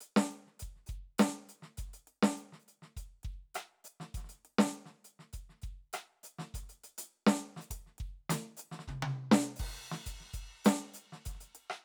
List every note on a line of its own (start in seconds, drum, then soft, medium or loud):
0.00 closed hi-hat medium
0.16 snare loud
0.31 closed hi-hat soft
0.47 snare soft
0.59 closed hi-hat medium
0.59 kick soft
0.76 snare soft
0.82 snare soft
0.86 open hi-hat soft
0.86 kick soft
0.95 kick soft
1.18 closed hi-hat medium
1.18 snare loud
1.27 snare soft
1.49 closed hi-hat soft
1.62 snare soft
1.77 closed hi-hat medium
1.77 kick soft
1.77 snare soft
1.83 snare soft
1.87 kick soft
1.87 snare soft
1.91 closed hi-hat soft
1.91 snare soft
2.07 closed hi-hat soft
2.23 snare medium
2.37 closed hi-hat soft
2.52 snare soft
2.59 hi-hat pedal soft
2.68 closed hi-hat soft
2.82 snare soft
2.97 closed hi-hat soft
2.97 kick soft
3.04 snare soft
3.23 kick soft
3.23 closed hi-hat soft
3.33 kick soft
3.54 closed hi-hat medium
3.54 cross-stick medium
3.84 hi-hat pedal medium
4.00 snare soft
4.14 closed hi-hat medium
4.14 kick soft
4.14 snare soft
4.23 kick soft
4.23 snare soft
4.29 closed hi-hat soft
4.29 snare soft
4.34 snare soft
4.45 closed hi-hat soft
4.58 snare loud
4.65 snare soft
4.73 closed hi-hat soft
4.86 snare soft
4.93 snare soft
5.04 closed hi-hat soft
5.19 snare soft
5.33 closed hi-hat medium
5.33 kick soft
5.49 snare soft
5.54 snare soft
5.62 closed hi-hat soft
5.62 kick soft
5.93 closed hi-hat medium
5.93 cross-stick medium
6.23 closed hi-hat soft
6.23 hi-hat pedal medium
6.38 snare medium
6.54 closed hi-hat medium
6.54 kick soft
6.54 snare soft
6.62 kick soft
6.62 snare soft
6.67 closed hi-hat soft
6.67 snare soft
6.70 snare soft
6.73 snare soft
6.84 closed hi-hat medium
6.98 closed hi-hat loud
7.26 snare loud
7.56 snare soft
7.61 hi-hat pedal medium
7.70 kick soft
7.70 closed hi-hat medium
7.86 snare soft
7.98 kick soft
7.98 closed hi-hat soft
8.09 kick soft
8.29 closed hi-hat loud
8.29 snare loud
8.57 closed hi-hat medium
8.57 hi-hat pedal medium
8.71 snare soft
8.79 snare soft
8.87 kick soft
8.87 snare soft
8.87 high tom medium
9.02 high tom loud
9.31 snare loud
9.56 kick medium
9.56 hi-hat pedal medium
9.56 crash medium
9.91 snare medium
10.06 closed hi-hat medium
10.06 kick soft
10.20 snare soft
10.26 snare soft
10.33 closed hi-hat medium
10.33 kick soft
10.33 snare soft
10.64 closed hi-hat medium
10.64 snare loud
10.94 closed hi-hat soft
10.94 hi-hat pedal medium
11.12 snare soft
11.25 closed hi-hat medium
11.25 kick soft
11.25 snare soft
11.35 kick soft
11.35 snare soft
11.40 closed hi-hat medium
11.40 snare soft
11.46 snare soft
11.55 closed hi-hat medium
11.70 cross-stick medium